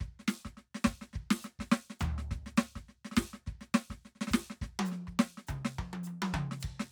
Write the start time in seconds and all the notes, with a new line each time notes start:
0.01 kick, snare
0.08 kick
0.20 snare
0.28 snare, hi-hat pedal
0.45 kick, snare
0.58 snare
0.75 snare
0.85 kick, snare, hi-hat pedal
0.93 kick
1.02 snare
1.14 kick, snare
1.22 kick
1.31 snare
1.42 snare, hi-hat pedal
1.60 kick, snare
1.72 snare
1.90 snare
2.00 kick, floor tom, hi-hat pedal
2.09 kick
2.12 kick
2.19 snare
2.31 kick, snare
2.38 kick
2.43 kick, snare
2.58 snare, hi-hat pedal
2.76 kick, snare
2.82 kick
2.89 snare
3.05 snare
3.12 snare
3.16 kick, snare, hi-hat pedal
3.24 kick
3.34 snare
3.47 kick, snare
3.55 kick
3.62 snare
3.75 snare, hi-hat pedal
3.91 kick, snare
4.06 snare
4.16 snare
4.22 snare
4.28 kick, snare, hi-hat pedal
4.34 snare
4.50 snare
4.62 kick, snare
4.69 kick
4.80 high tom
4.86 hi-hat pedal
4.92 snare
5.08 kick, cross-stick
5.20 snare
5.38 snare
5.48 kick, hi-hat pedal, mid tom
5.59 kick
5.65 snare
5.79 kick, high tom
5.86 kick
5.94 high tom
6.04 hi-hat pedal, high tom
6.23 high tom
6.27 hi-hat pedal
6.34 kick, mid tom
6.52 snare
6.61 kick, hi-hat pedal, floor tom
6.80 snare